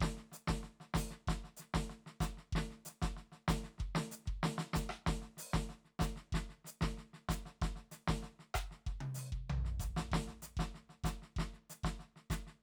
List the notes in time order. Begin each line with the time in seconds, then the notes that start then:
0.01 kick, snare
0.17 snare
0.32 snare, hi-hat pedal
0.48 kick, snare
0.64 snare
0.81 snare
0.94 kick, snare, hi-hat pedal
1.11 snare
1.28 kick, snare
1.44 snare
1.57 snare, hi-hat pedal
1.74 kick, snare
1.90 snare
2.07 snare
2.21 kick, snare, hi-hat pedal
2.38 snare
2.53 kick, snare
2.71 snare
2.86 snare, hi-hat pedal
3.02 kick, snare
3.17 snare
3.32 snare
3.48 kick, snare, hi-hat pedal
3.64 snare
3.79 kick, snare
3.96 snare
4.11 snare, hi-hat pedal
4.26 kick, snare
4.44 snare
4.59 snare
4.74 kick, snare, hi-hat pedal
4.90 cross-stick
5.07 kick, snare
5.22 snare
5.37 snare, hi-hat pedal
5.54 kick, snare
5.69 snare
5.85 snare
6.00 kick, snare, hi-hat pedal
6.17 snare
6.33 kick, snare
6.50 snare
6.65 snare, hi-hat pedal
6.82 kick, snare
6.98 snare
7.14 snare
7.29 kick, snare, hi-hat pedal
7.46 snare
7.62 kick, snare
7.76 snare
7.92 snare, hi-hat pedal
8.08 kick, snare
8.23 snare
8.40 snare
8.55 kick, cross-stick, hi-hat pedal
8.72 snare
8.87 kick, snare
9.01 open hi-hat, high tom
9.15 snare, hi-hat pedal
9.33 kick, snare
9.50 floor tom
9.65 snare
9.80 kick, snare, hi-hat pedal
9.97 snare
10.12 kick, snare
10.28 snare
10.43 snare, hi-hat pedal
10.57 kick, snare
10.75 snare
10.90 snare
11.04 kick, snare, hi-hat pedal
11.23 snare
11.37 kick, snare
11.54 snare
11.70 snare, hi-hat pedal
11.84 kick, snare
12.00 snare
12.16 snare
12.31 kick, snare, hi-hat pedal
12.47 snare